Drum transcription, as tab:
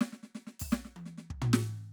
PC |-----xx-x-------|
SD |oggog-og-gg--o--|
T1 |--------o-------|
FT |------------o---|
BD |-----o-----o----|